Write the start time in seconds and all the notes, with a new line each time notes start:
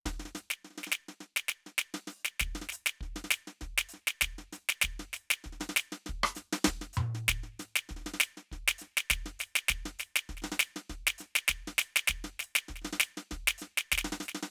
0.05 kick, snare
0.13 snare
0.19 snare
0.25 snare
0.34 snare, hi-hat pedal
0.50 snare
0.64 snare
0.70 snare
0.75 snare
0.77 snare
0.83 snare
0.86 snare
0.91 snare
1.08 snare
1.20 snare
1.36 snare
1.48 snare
1.66 snare
1.78 snare
1.93 snare
2.07 snare, hi-hat pedal
2.24 snare
2.39 kick, snare
2.46 kick
2.54 snare
2.61 snare
2.68 snare, hi-hat pedal
2.86 snare
3.00 kick, snare
3.15 snare
3.23 snare
3.30 snare, hi-hat pedal
3.47 snare
3.60 kick, snare
3.77 snare
3.88 hi-hat pedal
3.93 snare
4.07 snare
4.21 kick, snare
4.38 snare
4.52 snare, hi-hat pedal
4.68 snare
4.81 kick, snare
4.99 snare
5.13 snare, hi-hat pedal
5.30 snare
5.43 kick, snare
5.52 snare
5.60 snare
5.69 snare
5.76 snare, hi-hat pedal
5.92 snare
6.06 kick, snare
6.23 cross-stick
6.35 snare, hi-hat pedal
6.52 snare
6.64 kick, snare
6.81 snare
6.93 hi-hat pedal, mid tom
7.14 snare
7.28 kick, snare
7.34 kick
7.43 snare
7.59 snare, hi-hat pedal
7.75 snare
7.89 kick, snare
7.96 snare
8.01 snare
8.06 snare
8.13 snare
8.20 snare, hi-hat pedal
8.37 snare
8.51 kick, snare
8.67 snare
8.78 snare, hi-hat pedal
8.97 snare
9.10 kick, snare
9.25 snare
9.39 snare, hi-hat pedal
9.55 snare
9.68 kick, snare
9.85 snare
9.98 snare, hi-hat pedal
10.15 snare
10.29 kick, snare
10.36 snare
10.41 snare
10.43 snare
10.51 snare
10.59 snare, hi-hat pedal
10.76 snare
10.89 kick, snare
11.06 snare
11.18 snare, hi-hat pedal
11.35 snare
11.47 kick, snare
11.67 snare
11.78 snare, hi-hat pedal
11.95 snare
12.07 kick, snare
12.24 snare
12.39 snare, hi-hat pedal
12.55 snare
12.68 kick, snare
12.75 snare
12.81 snare
12.83 snare
12.92 snare
12.99 snare, hi-hat pedal
13.17 snare
13.30 kick, snare
13.47 snare
13.57 snare, hi-hat pedal
13.77 snare
13.91 kick, snare
13.97 snare
14.04 snare
14.12 snare
14.20 snare, hi-hat pedal
14.28 snare
14.34 snare
14.42 snare